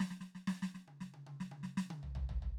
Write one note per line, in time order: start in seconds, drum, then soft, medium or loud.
0.00 snare medium
0.10 snare soft
0.21 snare soft
0.35 snare soft
0.48 snare medium
0.62 snare medium
0.75 snare soft
0.88 high tom soft
1.01 snare soft
1.14 high tom medium
1.27 high tom medium
1.40 snare soft
1.52 high tom medium
1.63 snare soft
1.78 snare medium
1.91 high tom medium
2.03 floor tom medium
2.15 floor tom medium
2.29 floor tom medium
2.42 floor tom medium